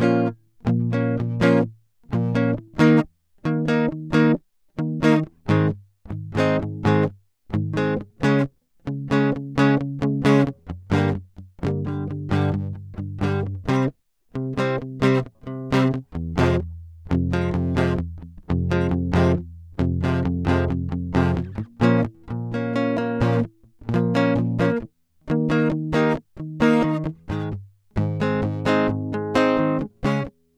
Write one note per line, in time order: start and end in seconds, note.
0.01 0.42 A#2
0.01 0.35 F3
0.01 0.36 A#3
0.01 0.34 C#4
0.01 0.37 F4
0.68 1.19 A#2
0.68 1.22 F3
0.68 0.94 A#3
0.94 1.21 A#3
0.94 1.20 C#4
0.94 1.21 F4
1.19 1.73 A#2
1.19 1.42 F3
1.43 1.73 F3
1.43 1.69 A#3
1.43 1.68 C#4
1.43 1.67 F4
2.05 2.34 A#3
2.15 2.59 A#2
2.15 2.57 F3
2.37 2.58 A#3
2.37 2.63 C#4
2.81 3.08 D#3
2.81 3.06 A#3
2.81 3.08 D#4
3.46 3.92 D#3
3.46 3.70 A#3
3.70 3.91 A#3
3.70 3.91 D#4
3.94 4.13 D#3
4.14 4.45 D#3
4.14 4.40 A#3
4.14 4.38 D#4
4.80 5.04 D#3
4.80 5.05 A#3
5.04 5.32 D#3
5.04 5.23 A#3
5.04 5.25 D#4
5.50 5.78 G#2
5.50 5.76 D#3
5.50 5.78 G#3
5.50 5.76 C4
6.12 6.36 G#2
6.12 6.32 D#3
6.12 6.27 G#3
6.37 6.63 G#2
6.37 6.62 D#3
6.37 6.61 G#3
6.37 6.62 C4
6.41 6.63 D#4
6.64 6.86 G#2
6.64 6.88 D#3
6.87 7.10 G#2
6.87 7.13 D#3
6.87 7.15 G#3
6.87 7.15 C4
7.55 8.04 G#2
7.55 7.74 D#3
7.55 7.76 G#3
7.75 7.99 D#3
7.75 7.99 G#3
7.80 8.01 C4
8.25 8.54 C#3
8.25 8.46 G#3
8.25 8.50 C#4
8.88 9.11 C#3
8.88 9.07 G#3
9.12 9.36 C#3
9.12 9.35 G#3
9.12 9.35 C#4
9.38 9.57 C#3
9.59 9.80 C#3
9.59 9.80 G#3
9.59 9.81 C#4
9.82 10.03 C#3
10.03 10.25 C#3
10.03 10.27 G#3
10.03 10.28 C#4
10.26 10.47 C#3
10.26 10.46 G#3
10.26 10.49 C#4
10.93 11.20 G2
10.93 11.26 D3
10.93 11.22 G3
10.93 11.16 A#3
11.64 12.32 G2
11.64 11.86 D3
11.64 11.86 G3
11.70 11.89 A#3
11.86 12.09 D3
11.86 12.08 G3
12.09 12.34 D3
12.09 12.21 G3
12.33 12.54 G2
12.33 12.51 D3
12.33 12.58 G3
12.51 12.73 G2
12.51 12.75 D3
12.75 12.99 G2
12.99 13.23 G2
12.99 13.22 D3
13.23 13.75 G2
13.23 13.45 D3
13.23 13.46 G3
13.70 13.95 C3
13.70 13.95 G3
13.70 13.93 C4
14.37 14.59 C3
14.37 14.57 G3
14.59 14.81 C3
14.59 14.81 G3
14.59 14.81 C4
14.59 14.83 E4
14.83 15.03 C3
15.03 15.26 C3
15.03 15.24 G3
15.03 15.25 C4
15.45 15.73 C3
15.45 15.85 G3
15.74 15.94 C3
15.74 15.94 C4
15.95 16.07 C3
16.17 16.38 E2
16.39 17.12 E2
16.39 16.63 C3
16.39 16.66 F3
16.39 16.63 G#3
17.12 17.53 F2
17.12 17.54 C3
17.35 17.55 F3
17.35 17.54 G#3
17.53 18.43 F2
17.57 17.78 C3
17.78 18.06 C3
17.78 18.05 F3
17.78 18.07 G#3
18.51 18.90 F2
18.51 18.91 C3
18.73 18.93 F3
18.73 18.93 G#3
18.91 19.15 F2
18.91 19.15 C3
19.15 19.39 F2
19.15 19.43 C3
19.15 19.37 F3
19.15 19.46 G#3
19.80 20.24 F2
19.80 20.04 C3
19.80 19.94 F3
20.05 20.25 C3
20.05 20.26 F3
20.05 20.27 G#3
20.24 20.46 F2
20.24 20.49 F4
20.29 20.47 C3
20.46 20.72 F2
20.46 20.70 C3
20.51 20.70 F3
20.51 20.71 G#3
20.72 20.92 F2
20.72 20.90 C3
20.91 21.14 F2
20.91 21.12 C3
21.16 21.38 F2
21.16 21.37 C3
21.16 21.37 F3
21.16 21.38 G#3
21.38 21.54 F2
21.57 21.69 A2
21.83 22.13 A#2
21.83 22.05 F3
21.83 22.07 A#3
21.83 22.10 C#4
22.29 23.23 A#2
22.53 23.20 F3
22.53 22.99 A#3
22.53 22.75 C#4
22.53 22.75 F4
22.76 22.98 C#4
22.76 23.28 F4
22.98 23.24 A#3
22.98 23.26 C#4
23.22 23.52 A#2
23.22 23.45 F3
23.22 23.50 A#3
23.22 23.48 C#4
23.90 24.37 A#2
23.95 24.38 F3
23.95 24.16 A#3
24.16 24.39 A#3
24.16 24.40 C#4
24.16 24.40 F4
24.37 24.78 A#2
24.37 24.60 F3
24.60 24.77 F3
24.60 24.83 A#3
24.60 24.77 C#4
25.31 25.51 D#3
25.31 25.53 A#3
25.51 25.73 D#3
25.51 25.71 A#3
25.51 25.77 D#4
25.71 25.94 D#3
25.71 25.93 A#3
25.94 26.26 D#3
25.94 26.17 A#3
25.94 26.23 D#4
25.94 26.22 G4
26.39 26.61 D#3
26.62 26.84 D#3
26.62 26.85 A#3
26.62 27.03 D#4
26.84 27.05 D#3
27.05 27.17 D#3
27.30 27.61 G#2
27.30 27.60 D#3
27.30 27.54 G#3
27.97 28.43 G#2
27.97 28.44 D#3
27.97 28.42 G#3
28.22 28.46 C4
28.42 28.89 G#2
28.42 28.89 D#3
28.42 28.66 G#3
28.67 28.90 G#3
28.67 29.14 C4
28.67 28.93 D#4
28.89 29.16 G#2
28.89 29.58 D#3
28.89 29.14 G#3
29.14 29.91 G#2
29.14 29.58 G#3
29.14 29.36 C4
29.36 29.92 C4
29.36 29.83 D#4
29.36 29.56 G#4
29.59 29.90 D#3
29.59 29.92 G#3
30.05 30.27 C#3
30.05 30.26 G#3
30.05 30.32 C#4